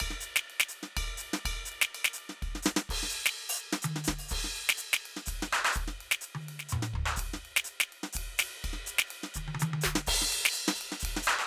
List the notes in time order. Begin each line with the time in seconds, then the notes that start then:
0.01 kick, ride bell
0.08 kick, snare
0.21 hi-hat pedal
0.26 ride
0.37 snare
0.44 hi-hat pedal
0.51 ride
0.61 snare
0.70 hi-hat pedal
0.74 ride
0.84 snare
0.97 kick, ride bell
1.04 kick
1.07 kick
1.18 hi-hat pedal
1.22 ride
1.34 snare
1.46 kick, ride bell
1.52 kick
1.55 kick
1.66 hi-hat pedal
1.73 ride
1.82 snare
1.95 ride bell
2.05 snare
2.14 hi-hat pedal
2.19 ride
2.30 snare
2.43 kick, ride bell
2.49 kick
2.52 kick, snare
2.63 snare, hi-hat pedal
2.77 snare
2.90 kick, crash
2.96 kick
3.04 snare
3.10 hi-hat pedal
3.16 ride bell
3.27 snare
3.39 ride bell
3.50 open hi-hat
3.58 hi-hat pedal
3.73 snare
3.83 hi-hat pedal, high tom
3.97 snare
4.05 snare, hi-hat pedal
4.09 kick
4.20 open hi-hat
4.29 kick, hi-hat pedal, crash
4.38 kick
4.41 kick, snare
4.57 ride
4.70 snare
4.78 hi-hat pedal, ride
4.94 snare
4.99 hi-hat pedal
5.06 ride
5.17 snare
5.27 kick, hi-hat pedal, ride
5.34 kick
5.43 snare, hi-hat pedal
5.51 kick, percussion
5.65 percussion
5.73 kick, hi-hat pedal
5.78 ride
5.83 kick
5.87 kick, snare
5.94 hi-hat pedal
6.02 ride
6.12 snare
6.22 hi-hat pedal, ride
6.36 high tom
6.41 hi-hat pedal
6.49 ride
6.60 snare
6.70 hi-hat pedal, mid tom
6.83 snare
6.89 hi-hat pedal
6.95 kick, floor tom
7.06 percussion
7.17 kick, hi-hat pedal, ride
7.24 kick
7.28 kick
7.34 snare
7.46 ride
7.57 snare
7.65 hi-hat pedal
7.70 ride
7.81 snare
7.93 ride
8.04 snare
8.14 kick, hi-hat pedal, ride
8.22 kick
8.39 snare, hi-hat pedal, ride
8.65 kick, ride bell
8.71 kick, snare
8.87 hi-hat pedal, ride
8.99 snare
9.08 hi-hat pedal, ride
9.24 snare
9.35 kick, hi-hat pedal, high tom
9.49 high tom
9.55 high tom
9.60 hi-hat pedal, high tom
9.74 high tom
9.82 snare, hi-hat pedal
9.87 kick
9.92 kick
9.96 snare
10.08 kick, hi-hat pedal, crash
10.18 kick
10.22 snare
10.33 ride
10.46 snare
10.53 hi-hat pedal
10.58 ride
10.69 snare
10.76 kick, hi-hat pedal
10.82 ride
10.93 snare
11.01 kick, hi-hat pedal
11.06 kick, ride
11.13 kick
11.17 snare
11.24 hi-hat pedal
11.28 percussion
11.39 percussion